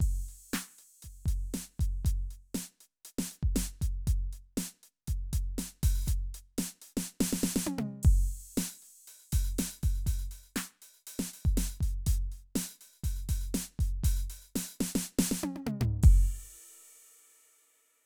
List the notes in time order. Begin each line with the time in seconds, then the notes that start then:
0.01 kick, crash
0.29 open hi-hat
0.54 snare, closed hi-hat
0.79 closed hi-hat
1.03 kick, closed hi-hat
1.26 kick, closed hi-hat
1.54 snare, closed hi-hat
1.80 kick, closed hi-hat
2.05 kick, closed hi-hat
2.31 closed hi-hat
2.55 snare, closed hi-hat
2.81 closed hi-hat
3.05 closed hi-hat
3.19 snare
3.32 closed hi-hat
3.43 kick
3.56 closed hi-hat, snare
3.82 kick, closed hi-hat
4.08 kick, closed hi-hat
4.33 closed hi-hat
4.58 snare, closed hi-hat
4.84 closed hi-hat
5.08 kick, closed hi-hat
5.34 kick, closed hi-hat
5.59 snare, closed hi-hat
5.84 kick, open hi-hat
6.07 kick, closed hi-hat, hi-hat pedal
6.35 closed hi-hat
6.59 snare, open hi-hat
6.82 open hi-hat
6.97 snare
7.21 snare
7.33 snare
7.44 snare
7.56 snare
7.67 high tom
7.79 mid tom
8.04 kick, crash
8.58 snare, open hi-hat
8.83 open hi-hat
9.08 open hi-hat
9.33 kick, open hi-hat
9.59 snare, open hi-hat
9.84 kick, open hi-hat
10.07 kick, open hi-hat
10.32 open hi-hat
10.56 snare, open hi-hat
10.82 open hi-hat
11.07 open hi-hat
11.20 snare
11.34 open hi-hat
11.46 kick
11.58 snare, open hi-hat
11.81 kick, open hi-hat
12.07 open hi-hat, kick
12.32 open hi-hat
12.56 snare, open hi-hat
12.81 open hi-hat
13.04 kick, open hi-hat
13.29 kick, open hi-hat
13.55 snare, open hi-hat
13.80 kick, open hi-hat
14.04 kick, open hi-hat
14.30 open hi-hat
14.56 snare, open hi-hat
14.81 snare
14.96 snare
15.19 snare
15.32 snare
15.44 high tom
15.56 high tom
15.67 mid tom
15.81 floor tom
16.03 kick, ride, crash